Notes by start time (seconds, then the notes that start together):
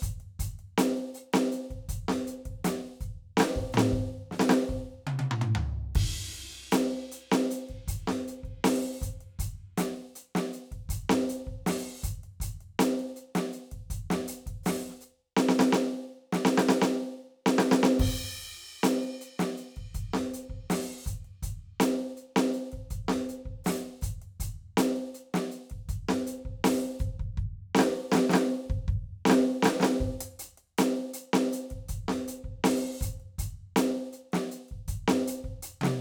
0.01 closed hi-hat, kick, hi-hat pedal
0.20 closed hi-hat
0.40 closed hi-hat, kick
0.59 closed hi-hat
0.78 closed hi-hat, snare
0.97 closed hi-hat
1.14 open hi-hat, hi-hat pedal
1.33 snare, closed hi-hat
1.52 closed hi-hat
1.71 kick, closed hi-hat
1.89 closed hi-hat, kick
2.09 snare
2.27 closed hi-hat
2.46 kick, closed hi-hat
2.65 open hi-hat, snare
3.01 kick, hi-hat pedal
3.37 snare, hi-hat pedal
3.40 snare
3.56 kick
3.73 hi-hat pedal, mid tom
3.78 snare
3.92 kick
4.31 snare
4.40 snare
4.48 snare, hi-hat pedal
4.69 kick
5.07 high tom
5.19 high tom
5.31 mid tom
5.42 mid tom
5.55 floor tom
5.95 kick, ride
6.33 closed hi-hat
6.52 closed hi-hat
6.72 closed hi-hat, snare
7.12 closed hi-hat
7.32 snare, closed hi-hat
7.51 closed hi-hat
7.69 kick, closed hi-hat
7.88 closed hi-hat, kick
8.08 snare, closed hi-hat
8.28 closed hi-hat
8.43 kick, closed hi-hat
8.64 open hi-hat, snare
9.01 closed hi-hat, kick, hi-hat pedal
9.21 closed hi-hat
9.39 closed hi-hat, kick
9.60 closed hi-hat
9.78 closed hi-hat, snare
9.96 closed hi-hat
10.16 closed hi-hat
10.35 snare
10.53 closed hi-hat
10.72 kick, closed hi-hat
10.89 closed hi-hat, kick
11.10 snare
11.29 closed hi-hat
11.47 kick, closed hi-hat
11.67 open hi-hat, snare
12.02 closed hi-hat, kick, hi-hat pedal
12.24 closed hi-hat
12.40 closed hi-hat, kick
12.61 closed hi-hat
12.79 closed hi-hat, snare
12.99 closed hi-hat
13.16 closed hi-hat
13.35 snare, closed hi-hat
13.53 closed hi-hat
13.72 kick, closed hi-hat
13.90 closed hi-hat, kick
14.10 snare, closed hi-hat
14.28 closed hi-hat
14.47 kick, closed hi-hat
14.64 open hi-hat, snare, hi-hat pedal
14.89 snare
15.01 hi-hat pedal
15.37 snare
15.49 snare
15.59 snare
15.73 snare
16.33 snare
16.45 snare
16.58 snare
16.69 snare
16.82 snare
17.46 snare
17.58 snare
17.72 snare
17.83 snare
18.00 kick, crash
18.38 crash
18.83 closed hi-hat, snare
19.03 closed hi-hat
19.21 closed hi-hat
19.40 snare, closed hi-hat
19.58 closed hi-hat
19.76 kick, closed hi-hat
19.95 closed hi-hat, kick
20.14 snare
20.34 closed hi-hat
20.50 kick
20.70 open hi-hat, snare
21.05 closed hi-hat, kick, hi-hat pedal
21.25 closed hi-hat
21.43 closed hi-hat, kick
21.80 closed hi-hat, snare
21.99 closed hi-hat
22.17 closed hi-hat
22.36 snare, closed hi-hat
22.54 closed hi-hat
22.72 kick, closed hi-hat
22.91 closed hi-hat, kick
23.09 snare
23.29 closed hi-hat
23.46 kick
23.64 open hi-hat, snare, hi-hat pedal
24.02 closed hi-hat, kick, hi-hat pedal
24.22 closed hi-hat
24.40 closed hi-hat, kick
24.77 closed hi-hat, snare
24.96 closed hi-hat
25.15 closed hi-hat
25.34 snare, closed hi-hat
25.52 closed hi-hat
25.70 kick, closed hi-hat
25.89 closed hi-hat, kick
26.09 snare
26.27 closed hi-hat
26.45 kick
26.64 open hi-hat, snare
26.99 kick, hi-hat pedal
27.20 kick
27.27 kick
27.38 kick
27.75 snare
27.79 snare
28.12 snare
28.15 snare
28.30 snare
28.34 snare
28.66 kick
28.70 kick
28.88 kick
28.92 crash, ride
29.26 snare
29.30 snare
29.63 snare
29.66 snare
29.80 snare
29.83 snare
30.00 kick
30.21 closed hi-hat
30.39 closed hi-hat
30.58 closed hi-hat
30.78 closed hi-hat, snare
30.96 closed hi-hat
31.14 closed hi-hat
31.33 snare
31.53 closed hi-hat
31.70 kick, closed hi-hat
31.89 closed hi-hat, kick
32.08 snare
32.28 closed hi-hat
32.44 kick
32.64 open hi-hat, snare
33.00 closed hi-hat, kick, hi-hat pedal
33.20 closed hi-hat
33.39 closed hi-hat, kick
33.76 closed hi-hat, snare
34.13 closed hi-hat
34.32 snare, closed hi-hat
34.52 closed hi-hat
34.69 kick, closed hi-hat
34.88 closed hi-hat, kick
35.08 snare
35.28 closed hi-hat
35.44 kick, closed hi-hat
35.63 closed hi-hat
35.81 snare, high tom